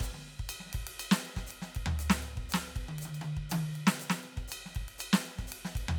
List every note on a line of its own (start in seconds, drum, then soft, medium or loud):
0.01 kick soft
0.01 hi-hat pedal loud
0.01 crash medium
0.07 kick soft
0.07 cross-stick soft
0.15 high tom soft
0.40 kick soft
0.49 hi-hat pedal loud
0.49 ride bell loud
0.61 snare soft
0.67 snare soft
0.71 snare soft
0.71 ride loud
0.74 kick soft
0.74 snare soft
0.77 snare soft
0.79 kick soft
0.79 snare soft
0.88 ride loud
1.00 hi-hat pedal loud
1.00 ride bell loud
1.12 snare loud
1.26 ride medium
1.37 kick soft
1.37 snare soft
1.47 hi-hat pedal loud
1.47 ride medium
1.62 snare medium
1.76 kick soft
1.76 ride medium
1.87 floor tom loud
2.00 hi-hat pedal loud
2.00 ride medium
2.11 snare loud
2.22 hi-hat pedal soft
2.22 ride medium
2.38 kick soft
2.50 hi-hat pedal medium
2.50 ride loud
2.54 snare loud
2.76 kick soft
2.76 ride medium
2.89 high tom medium
2.99 hi-hat pedal loud
2.99 ride medium
3.06 high tom medium
3.15 ride bell medium
3.22 hi-hat pedal soft
3.22 high tom medium
3.37 kick soft
3.50 hi-hat pedal loud
3.50 high tom loud
3.50 ride loud
3.73 hi-hat pedal soft
3.73 ride medium
3.88 snare loud
4.00 hi-hat pedal loud
4.00 ride medium
4.11 snare loud
4.21 hi-hat pedal soft
4.21 ride soft
4.37 kick soft
4.37 snare soft
4.48 hi-hat pedal medium
4.53 ride bell loud
4.66 snare soft
4.66 hi-hat pedal soft
4.76 kick soft
4.76 ride medium
4.81 snare soft
4.88 snare soft
4.88 ride medium
4.99 hi-hat pedal loud
4.99 ride bell loud
5.14 snare loud
5.21 hi-hat pedal soft
5.26 ride medium
5.39 kick soft
5.39 snare soft
5.48 hi-hat pedal medium
5.53 ride loud
5.66 snare medium
5.76 kick soft
5.76 ride medium
5.82 kick soft
5.89 floor tom loud